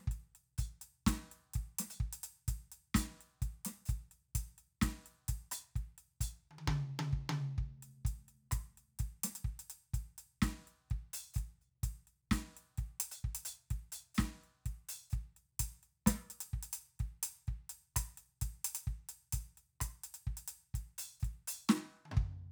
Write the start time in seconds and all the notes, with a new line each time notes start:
0.01 snare
0.04 kick, snare
0.12 closed hi-hat
0.35 closed hi-hat
0.58 closed hi-hat, kick
0.82 closed hi-hat
1.07 kick, snare, closed hi-hat
1.32 closed hi-hat
1.54 kick, closed hi-hat
1.79 snare, closed hi-hat
1.90 closed hi-hat
2.00 kick
2.13 closed hi-hat
2.24 closed hi-hat
2.48 kick, closed hi-hat
2.72 closed hi-hat
2.95 closed hi-hat, kick, snare
3.21 closed hi-hat
3.42 kick, closed hi-hat
3.65 snare, open hi-hat
3.86 kick, snare, hi-hat pedal
3.90 closed hi-hat
4.12 closed hi-hat
4.35 kick, closed hi-hat
4.58 closed hi-hat
4.82 kick, snare, closed hi-hat
5.06 closed hi-hat
5.29 kick, closed hi-hat
5.52 closed hi-hat, cross-stick
5.76 kick, closed hi-hat
5.98 closed hi-hat
6.21 closed hi-hat, kick
6.51 high tom
6.59 high tom
6.68 kick, high tom
6.99 high tom
7.13 kick
7.30 high tom
7.58 kick
7.83 closed hi-hat
8.05 kick, closed hi-hat
8.29 closed hi-hat
8.52 kick, cross-stick, closed hi-hat
8.78 closed hi-hat
8.99 kick, closed hi-hat
9.24 snare, closed hi-hat
9.36 closed hi-hat
9.45 kick
9.60 closed hi-hat
9.70 closed hi-hat
9.94 kick, closed hi-hat
10.18 closed hi-hat
10.42 kick, snare, closed hi-hat
10.68 closed hi-hat
10.90 kick, closed hi-hat
11.14 open hi-hat
11.34 kick, hi-hat pedal
11.38 closed hi-hat
11.62 closed hi-hat
11.83 kick, closed hi-hat
12.07 closed hi-hat
12.31 closed hi-hat, kick, snare
12.57 closed hi-hat
12.78 kick, closed hi-hat
13.00 closed hi-hat
13.12 closed hi-hat
13.24 kick
13.35 closed hi-hat
13.46 closed hi-hat
13.71 kick, closed hi-hat
13.92 closed hi-hat
14.15 snare, hi-hat pedal
14.19 kick, closed hi-hat
14.44 closed hi-hat
14.66 kick, closed hi-hat
14.89 open hi-hat
15.10 kick, closed hi-hat, hi-hat pedal
15.37 closed hi-hat
15.60 kick, closed hi-hat
15.83 closed hi-hat
16.07 kick, snare, closed hi-hat
16.30 closed hi-hat
16.41 closed hi-hat
16.54 kick
16.63 closed hi-hat
16.73 closed hi-hat
17.00 kick, closed hi-hat
17.23 closed hi-hat
17.48 kick, closed hi-hat
17.70 closed hi-hat
17.96 kick, cross-stick, closed hi-hat
18.18 closed hi-hat
18.42 kick, closed hi-hat
18.65 closed hi-hat
18.75 closed hi-hat
18.87 kick
19.09 closed hi-hat
19.33 kick, closed hi-hat
19.58 closed hi-hat
19.81 kick, cross-stick, closed hi-hat
20.04 closed hi-hat
20.14 closed hi-hat
20.27 kick
20.37 closed hi-hat
20.48 closed hi-hat
20.74 kick, closed hi-hat
20.98 open hi-hat
21.20 kick, hi-hat pedal
21.25 closed hi-hat
21.48 open hi-hat
21.69 snare, hi-hat pedal
22.06 high tom
22.12 floor tom
22.17 kick